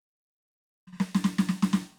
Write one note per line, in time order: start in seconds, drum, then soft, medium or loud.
0.88 snare soft
0.93 snare soft
0.97 snare soft
1.01 snare loud
1.15 snare loud
1.25 snare loud
1.39 snare loud
1.49 snare loud
1.63 snare loud
1.74 snare loud